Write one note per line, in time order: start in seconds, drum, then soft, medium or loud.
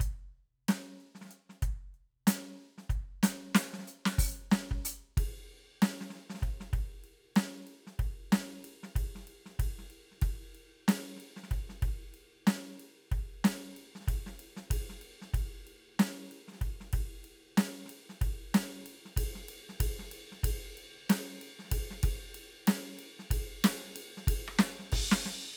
0.01 kick medium
0.01 closed hi-hat medium
0.69 snare loud
0.69 closed hi-hat loud
0.99 snare soft
0.99 closed hi-hat soft
1.16 snare soft
1.22 snare soft
1.29 snare soft
1.29 closed hi-hat medium
1.50 snare soft
1.63 kick medium
1.63 closed hi-hat medium
1.95 closed hi-hat soft
2.28 closed hi-hat loud
2.28 snare loud
2.60 closed hi-hat soft
2.79 snare soft
2.90 kick medium
2.90 closed hi-hat medium
3.24 closed hi-hat loud
3.24 snare loud
3.56 closed hi-hat loud
3.56 snare loud
3.74 snare soft
3.80 snare soft
3.83 snare soft
3.88 closed hi-hat medium
3.88 snare soft
4.06 snare loud
4.19 open hi-hat loud
4.19 kick medium
4.52 snare loud
4.52 hi-hat pedal soft
4.72 kick medium
4.86 closed hi-hat loud
5.18 kick medium
5.18 ride loud
5.83 snare loud
5.83 ride medium
6.02 snare soft
6.11 snare soft
6.11 ride soft
6.14 snare soft
6.17 snare soft
6.31 snare medium
6.35 snare soft
6.39 snare soft
6.42 kick medium
6.42 snare soft
6.42 ride soft
6.61 snare soft
6.74 kick medium
6.74 ride medium
7.05 ride soft
7.37 snare loud
7.37 ride medium
7.68 ride soft
7.88 snare soft
8.00 kick medium
8.00 ride medium
8.33 snare loud
8.33 ride medium
8.55 snare soft
8.61 snare soft
8.65 ride medium
8.84 snare soft
8.96 kick medium
8.96 ride medium
9.16 snare soft
9.19 snare soft
9.28 ride soft
9.47 snare soft
9.49 snare soft
9.60 kick medium
9.60 ride medium
9.79 snare soft
9.91 ride soft
10.12 snare soft
10.23 kick medium
10.23 ride medium
10.56 ride soft
10.72 ride soft
10.89 snare loud
10.89 ride loud
11.17 snare soft
11.21 ride soft
11.32 ride soft
11.37 snare soft
11.44 snare soft
11.47 snare soft
11.52 kick medium
11.52 ride medium
11.70 snare soft
11.83 kick medium
11.83 ride medium
12.15 ride soft
12.48 snare loud
12.48 ride medium
12.78 snare soft
12.78 ride soft
13.12 kick medium
13.12 ride medium
13.45 snare loud
13.45 ride loud
13.78 ride soft
13.96 snare soft
14.02 snare soft
14.05 snare soft
14.08 kick medium
14.08 snare soft
14.08 ride medium
14.27 snare soft
14.40 ride medium
14.57 snare soft
14.71 kick medium
14.71 ride loud
14.90 snare soft
15.02 ride soft
15.23 snare soft
15.34 kick medium
15.34 ride medium
15.68 ride soft
16.00 snare loud
16.00 ride medium
16.32 ride soft
16.49 snare soft
16.53 snare soft
16.55 snare soft
16.62 kick medium
16.62 ride medium
16.81 snare soft
16.94 kick medium
16.94 ride medium
17.25 ride soft
17.58 snare loud
17.58 ride loud
17.87 snare soft
17.87 ride medium
18.10 snare soft
18.22 kick medium
18.22 ride medium
18.55 snare loud
18.55 ride loud
18.87 ride medium
19.06 snare soft
19.17 kick medium
19.17 ride loud
19.36 snare soft
19.49 ride medium
19.70 snare soft
19.81 kick medium
19.81 ride loud
20.00 snare soft
20.03 snare soft
20.13 ride medium
20.33 snare soft
20.44 kick medium
20.44 ride loud
20.74 ride soft
20.78 ride soft
21.11 snare loud
21.11 ride loud
21.41 snare soft
21.41 ride medium
21.60 snare soft
21.60 ride soft
21.65 snare soft
21.69 kick medium
21.69 snare soft
21.69 ride loud
21.91 snare soft
22.04 kick medium
22.04 ride loud
22.36 ride medium
22.68 snare loud
22.68 ride loud
23.00 ride medium
23.20 snare soft
23.31 kick medium
23.31 ride loud
23.65 snare loud
23.65 ride loud
23.97 ride medium
24.18 snare soft
24.28 kick medium
24.28 ride loud
24.49 cross-stick medium
24.60 snare loud
24.80 snare soft
24.93 kick medium
24.93 ride loud
25.12 snare loud
25.26 snare medium